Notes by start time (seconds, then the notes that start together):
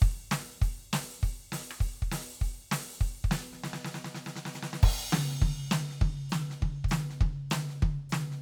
0.01 open hi-hat, kick
0.31 open hi-hat, snare
0.52 open hi-hat
0.62 open hi-hat, kick
0.93 open hi-hat, snare
1.14 open hi-hat
1.23 open hi-hat, kick
1.52 open hi-hat, snare
1.71 open hi-hat, cross-stick
1.81 open hi-hat, kick
2.02 kick
2.12 open hi-hat, snare
2.35 open hi-hat
2.42 open hi-hat, kick
2.72 open hi-hat, snare
2.93 open hi-hat
3.01 open hi-hat, kick
3.24 kick
3.31 open hi-hat, snare
3.53 snare
3.64 snare, hi-hat pedal
3.73 snare
3.85 snare
3.93 snare, hi-hat pedal
4.05 snare
4.15 snare
4.24 snare, hi-hat pedal
4.36 snare
4.46 snare
4.54 snare, hi-hat pedal
4.63 snare
4.73 snare
4.83 kick, crash
5.12 snare, hi-hat pedal, high tom
5.30 snare
5.42 kick, high tom
5.71 snare, hi-hat pedal, high tom
5.90 snare
6.02 kick, high tom
6.30 snare, hi-hat pedal, high tom
6.51 snare
6.62 kick, high tom
6.85 kick
6.89 snare, hi-hat pedal, high tom
7.10 snare
7.21 kick, high tom
7.50 snare, hi-hat pedal, high tom
7.70 snare
7.83 kick, high tom
8.10 snare, hi-hat pedal, high tom
8.32 snare